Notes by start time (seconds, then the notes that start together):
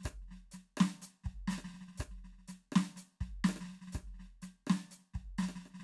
0.01 snare, hi-hat pedal
0.05 kick, cross-stick
0.22 snare
0.28 snare
0.31 snare
0.52 snare, hi-hat pedal
0.77 cross-stick, snare
1.02 snare, hi-hat pedal
1.05 snare
1.11 snare
1.19 snare
1.24 kick, snare
1.48 snare, hi-hat pedal
1.51 snare
1.53 snare
1.58 cross-stick
1.64 snare
1.68 snare
1.74 snare
1.81 snare
1.88 snare
1.92 snare
1.95 snare, hi-hat pedal
2.00 kick, cross-stick
2.11 snare
2.18 snare
2.24 snare
2.33 snare
2.39 snare
2.48 snare, hi-hat pedal
2.72 cross-stick, snare
2.96 snare, hi-hat pedal
3.07 snare
3.12 snare
3.21 kick, snare
3.29 kick
3.44 snare, hi-hat pedal
3.49 cross-stick
3.56 cross-stick
3.61 snare
3.64 snare
3.69 snare
3.73 snare
3.79 snare
3.81 snare
3.87 snare
3.92 kick, cross-stick, snare, hi-hat pedal
3.99 kick, cross-stick
4.07 snare
4.14 snare
4.18 snare
4.26 snare
4.42 snare, hi-hat pedal
4.67 cross-stick, snare
4.80 snare
4.91 snare, hi-hat pedal
4.99 snare
5.07 snare
5.14 kick, snare
5.20 kick
5.38 snare, hi-hat pedal
5.43 snare
5.49 cross-stick
5.56 snare
5.60 snare
5.66 cross-stick
5.70 snare
5.74 snare
5.80 snare